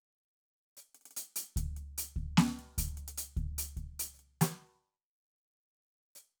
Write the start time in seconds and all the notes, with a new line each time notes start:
0.77 hi-hat pedal
0.95 closed hi-hat
1.01 closed hi-hat
1.06 closed hi-hat
1.11 closed hi-hat
1.17 closed hi-hat
1.36 closed hi-hat
1.56 kick, closed hi-hat
1.77 closed hi-hat
1.98 closed hi-hat
2.16 kick, closed hi-hat
2.37 snare
2.59 closed hi-hat
2.78 closed hi-hat, kick
2.88 closed hi-hat
2.97 closed hi-hat
3.08 closed hi-hat
3.18 closed hi-hat
3.37 kick, closed hi-hat
3.58 closed hi-hat
3.77 kick, closed hi-hat
3.99 closed hi-hat
4.14 hi-hat pedal
4.19 closed hi-hat
4.41 closed hi-hat, snare
6.15 hi-hat pedal